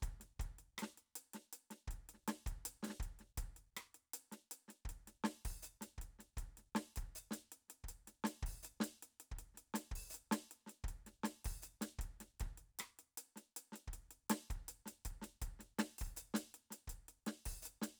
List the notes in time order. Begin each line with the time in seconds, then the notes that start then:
0.01 kick, snare, closed hi-hat
0.20 snare, closed hi-hat
0.40 kick, closed hi-hat
0.59 closed hi-hat
0.78 cross-stick, closed hi-hat
0.83 snare
0.98 closed hi-hat
1.16 closed hi-hat
1.34 snare, closed hi-hat
1.53 closed hi-hat
1.71 snare, closed hi-hat
1.88 kick, closed hi-hat
2.09 closed hi-hat
2.14 snare
2.28 snare, closed hi-hat
2.47 kick, closed hi-hat
2.66 closed hi-hat
2.83 snare, closed hi-hat
2.87 snare
2.90 snare
3.00 kick, closed hi-hat
3.19 snare, closed hi-hat
3.38 kick, closed hi-hat
3.57 closed hi-hat
3.77 cross-stick, closed hi-hat
3.95 closed hi-hat
4.14 closed hi-hat
4.32 snare, closed hi-hat
4.52 closed hi-hat
4.68 snare, closed hi-hat
4.85 kick
4.90 closed hi-hat
5.08 snare, closed hi-hat
5.24 snare, closed hi-hat
5.45 kick, open hi-hat
5.63 closed hi-hat, hi-hat pedal
5.81 snare, closed hi-hat
5.98 kick, closed hi-hat
6.19 snare, closed hi-hat
6.37 kick, closed hi-hat
6.58 snare, closed hi-hat
6.75 snare, closed hi-hat
6.96 kick, open hi-hat
7.15 hi-hat pedal
7.31 snare, closed hi-hat
7.52 closed hi-hat
7.69 snare, closed hi-hat
7.84 kick
7.89 closed hi-hat
8.08 snare, closed hi-hat
8.24 snare, closed hi-hat
8.43 kick, open hi-hat
8.63 closed hi-hat, hi-hat pedal
8.81 snare, closed hi-hat
9.03 closed hi-hat
9.20 closed hi-hat
9.32 kick
9.39 closed hi-hat
9.55 snare, closed hi-hat
9.74 snare, closed hi-hat
9.92 kick
9.96 open hi-hat
10.10 hi-hat pedal
10.15 closed hi-hat
10.32 snare, closed hi-hat
10.51 closed hi-hat
10.67 snare, closed hi-hat
10.84 kick
10.89 closed hi-hat
11.07 snare, closed hi-hat
11.24 snare, closed hi-hat
11.45 kick, open hi-hat
11.63 closed hi-hat, hi-hat pedal
11.82 snare, closed hi-hat
11.99 kick, closed hi-hat
12.21 snare, closed hi-hat
12.40 kick, snare, closed hi-hat
12.58 closed hi-hat
12.79 cross-stick, closed hi-hat
12.99 closed hi-hat
13.18 closed hi-hat
13.36 snare, closed hi-hat
13.57 closed hi-hat
13.73 snare, closed hi-hat
13.88 kick
13.94 closed hi-hat
14.11 closed hi-hat
14.30 snare, closed hi-hat
14.50 kick, closed hi-hat
14.69 closed hi-hat
14.86 snare, closed hi-hat
15.05 kick, closed hi-hat
15.22 snare, closed hi-hat
15.42 kick, closed hi-hat
15.60 snare, closed hi-hat
15.79 snare, closed hi-hat
15.99 kick, open hi-hat
16.17 closed hi-hat, hi-hat pedal
16.34 snare, closed hi-hat
16.55 closed hi-hat
16.71 snare, closed hi-hat
16.88 kick, closed hi-hat
17.09 closed hi-hat
17.27 snare, closed hi-hat
17.46 kick, open hi-hat
17.63 closed hi-hat, hi-hat pedal
17.82 snare, closed hi-hat